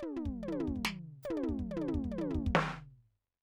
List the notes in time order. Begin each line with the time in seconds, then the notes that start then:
0.01 floor tom, high tom
0.16 floor tom
0.25 kick
0.42 high tom
0.47 floor tom
0.52 high tom
0.59 floor tom
0.67 kick
0.76 kick
0.85 snare
1.23 hi-hat pedal, high tom
1.29 floor tom
1.37 high tom
1.43 floor tom
1.49 kick
1.59 kick
1.71 high tom
1.76 floor tom
1.81 high tom
1.87 floor tom
1.94 kick
2.04 kick
2.11 high tom
2.17 floor tom, high tom
2.30 floor tom
2.34 kick
2.46 kick
2.55 snare